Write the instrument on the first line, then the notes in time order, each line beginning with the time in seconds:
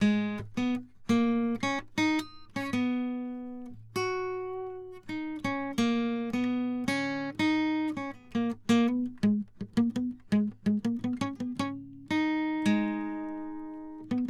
acoustic guitar
0.02 G#3
0.58 B3
1.10 A#3
1.63 C#4
1.98 D#4
2.56 C#4
2.74 B3
3.96 F#4
5.10 D#4
5.45 C#4
5.78 A#3
6.34 B3
6.88 C#4
7.40 D#4
7.97 C#4
8.15 B3
8.36 A#3
8.70 A#3
9.23 G#3
9.61 G#3
9.78 A#3
9.96 B3
10.32 G#3
10.66 G#3
10.85 A#3
11.05 B3
11.21 C#4
11.41 B3
11.60 C#4
12.11 D#4
12.66 G#3
14.12 B3